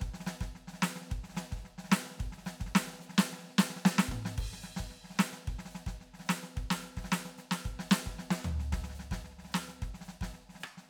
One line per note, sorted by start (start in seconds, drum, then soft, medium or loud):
0.01 kick soft
0.01 snare soft
0.08 kick soft
0.14 snare soft
0.21 snare soft
0.27 snare medium
0.27 hi-hat pedal soft
0.41 kick soft
0.41 snare soft
0.55 snare soft
0.68 snare soft
0.74 snare soft
0.79 snare soft
0.83 snare loud
0.83 hi-hat pedal soft
0.96 snare soft
1.02 snare soft
1.11 kick soft
1.11 snare soft
1.18 kick soft
1.24 snare soft
1.30 snare soft
1.34 snare soft
1.34 hi-hat pedal soft
1.37 snare medium
1.52 kick soft
1.52 snare soft
1.57 snare soft
1.65 snare soft
1.79 snare soft
1.85 snare soft
1.90 snare soft
1.92 snare loud
1.92 hi-hat pedal soft
2.06 snare soft
2.12 snare soft
2.19 kick soft
2.19 snare soft
2.27 kick soft
2.33 snare soft
2.39 snare soft
2.45 snare soft
2.45 hi-hat pedal soft
2.47 snare medium
2.60 kick soft
2.60 snare soft
2.67 snare soft
2.76 snare loud
2.88 snare soft
2.94 snare soft
3.00 snare soft
3.00 hi-hat pedal soft
3.10 snare soft
3.14 snare soft
3.18 snare soft
3.18 snare loud
3.33 snare soft
3.39 snare soft
3.44 snare soft
3.51 snare soft
3.59 snare loud
3.59 hi-hat pedal medium
3.70 snare soft
3.77 snare soft
3.86 snare loud
3.86 hi-hat pedal medium
3.99 snare loud
4.09 kick soft
4.09 mid tom medium
4.15 kick soft
4.26 snare medium
4.38 kick medium
4.38 crash medium
4.52 kick soft
4.52 snare soft
4.62 snare soft
4.62 hi-hat pedal soft
4.77 kick soft
4.77 snare medium
4.91 snare soft
4.96 snare soft
5.01 snare soft
5.05 snare soft
5.11 snare soft
5.15 snare soft
5.15 hi-hat pedal soft
5.20 snare loud
5.33 snare soft
5.48 kick soft
5.48 snare soft
5.54 kick soft
5.59 snare soft
5.66 snare soft
5.71 snare soft
5.71 hi-hat pedal soft
5.87 kick soft
5.87 snare soft
6.01 snare soft
6.08 snare soft
6.13 snare soft
6.20 snare soft
6.25 snare soft
6.25 hi-hat pedal soft
6.30 snare loud
6.44 snare soft
6.57 kick soft
6.57 snare soft
6.64 kick soft
6.71 snare loud
6.81 snare soft
6.81 hi-hat pedal soft
6.90 snare soft
6.95 kick soft
6.95 snare soft
6.97 snare soft
7.05 snare soft
7.12 snare loud
7.26 snare soft
7.38 snare soft
7.38 hi-hat pedal soft
7.52 snare medium
7.66 kick soft
7.66 snare soft
7.72 kick soft
7.80 snare medium
7.90 snare loud
7.90 hi-hat pedal soft
8.06 kick soft
8.06 snare soft
8.19 snare soft
8.31 snare loud
8.44 floor tom loud
8.44 hi-hat pedal soft
8.60 snare soft
8.73 kick soft
8.73 snare medium
8.80 kick soft
8.84 snare soft
8.90 snare soft
8.95 hi-hat pedal soft
9.00 snare soft
9.12 kick soft
9.12 snare medium
9.17 kick soft
9.25 snare soft
9.32 snare soft
9.38 snare soft
9.45 snare soft
9.50 snare soft
9.50 hi-hat pedal soft
9.55 snare medium
9.69 snare soft
9.82 kick soft
9.82 snare soft
9.89 kick soft
9.95 snare soft
10.01 snare soft
10.01 hi-hat pedal soft
10.09 snare soft
10.22 kick soft
10.22 snare medium
10.34 snare soft
10.41 snare soft
10.47 snare soft
10.49 snare soft
10.55 snare soft
10.61 cross-stick medium
10.61 snare soft
10.61 hi-hat pedal soft
10.78 snare soft
10.83 snare soft